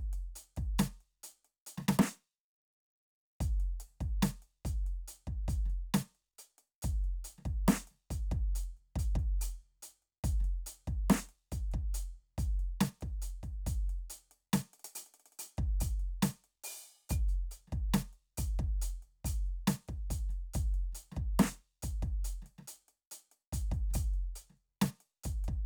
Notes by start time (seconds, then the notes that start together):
0.14 closed hi-hat
0.36 closed hi-hat
0.57 kick, closed hi-hat
0.79 closed hi-hat, snare
1.01 closed hi-hat
1.24 closed hi-hat
1.45 closed hi-hat
1.67 closed hi-hat
1.78 snare
1.89 snare
2.00 snare
3.41 closed hi-hat, kick
3.61 closed hi-hat
3.81 closed hi-hat
4.01 kick, closed hi-hat
4.23 closed hi-hat, snare
4.43 closed hi-hat
4.66 closed hi-hat, kick
4.87 closed hi-hat
5.08 closed hi-hat
5.28 kick, closed hi-hat
5.49 closed hi-hat, kick
5.66 snare
5.71 closed hi-hat
5.95 closed hi-hat, snare
6.16 closed hi-hat
6.39 closed hi-hat
6.59 closed hi-hat
6.83 closed hi-hat, kick
7.05 closed hi-hat
7.25 closed hi-hat
7.39 snare
7.46 kick, closed hi-hat
7.69 closed hi-hat, snare
7.88 snare, closed hi-hat
8.11 closed hi-hat, kick
8.32 kick, closed hi-hat
8.56 closed hi-hat
8.78 closed hi-hat
8.96 closed hi-hat, kick
9.16 kick, closed hi-hat
9.42 closed hi-hat
9.62 closed hi-hat
9.83 closed hi-hat
10.03 closed hi-hat
10.25 closed hi-hat, kick
10.41 snare
10.45 closed hi-hat
10.67 closed hi-hat
10.88 kick, closed hi-hat
11.11 closed hi-hat, snare
11.30 closed hi-hat
11.52 closed hi-hat, kick
11.72 kick, closed hi-hat
11.95 closed hi-hat
12.39 closed hi-hat, kick
12.60 closed hi-hat
12.81 closed hi-hat, snare
13.02 kick, closed hi-hat
13.23 closed hi-hat
13.44 kick, closed hi-hat
13.67 closed hi-hat, kick
13.90 closed hi-hat
14.11 closed hi-hat
14.32 closed hi-hat
14.54 closed hi-hat, snare
14.74 closed hi-hat
14.80 closed hi-hat
14.85 closed hi-hat
14.96 closed hi-hat
15.07 closed hi-hat
15.15 closed hi-hat
15.21 closed hi-hat
15.27 closed hi-hat
15.33 closed hi-hat
15.40 closed hi-hat
15.58 kick, closed hi-hat
15.81 closed hi-hat, kick
16.00 closed hi-hat
16.23 closed hi-hat, snare
16.45 closed hi-hat
16.64 open hi-hat
17.10 open hi-hat, kick, hi-hat pedal
17.29 closed hi-hat
17.52 closed hi-hat
17.68 snare
17.73 kick, closed hi-hat
17.94 closed hi-hat, snare
18.14 closed hi-hat
18.38 closed hi-hat, kick
18.60 kick, closed hi-hat
18.82 closed hi-hat
19.03 closed hi-hat
19.25 closed hi-hat, kick
19.47 closed hi-hat
19.68 closed hi-hat, snare
19.89 kick, closed hi-hat
20.11 closed hi-hat, kick
20.30 snare, closed hi-hat
20.54 closed hi-hat, kick
20.75 closed hi-hat
20.93 closed hi-hat, snare
21.12 snare
21.16 kick, closed hi-hat
21.40 closed hi-hat, snare
21.46 snare
21.83 closed hi-hat, kick
22.03 kick, closed hi-hat
22.25 closed hi-hat
22.43 snare
22.47 closed hi-hat
22.59 snare
22.68 closed hi-hat
22.89 closed hi-hat
23.12 closed hi-hat
23.32 closed hi-hat
23.53 closed hi-hat, kick
23.72 kick, closed hi-hat
23.91 closed hi-hat, snare
23.96 kick
24.14 closed hi-hat
24.36 closed hi-hat
24.50 snare
24.58 closed hi-hat
24.82 closed hi-hat, snare
25.01 closed hi-hat
25.24 closed hi-hat, kick
25.45 kick, closed hi-hat